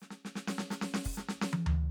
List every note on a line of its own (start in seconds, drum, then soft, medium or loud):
0.00 snare soft
0.00 hi-hat pedal soft
0.10 snare soft
0.25 snare medium
0.35 snare medium
0.48 snare medium
0.48 hi-hat pedal soft
0.58 snare medium
0.70 snare medium
0.70 hi-hat pedal soft
0.81 snare medium
0.94 snare medium
1.04 open hi-hat loud
1.04 kick medium
1.13 hi-hat pedal medium
1.17 snare medium
1.29 snare medium
1.41 snare medium
1.53 high tom loud
1.66 floor tom loud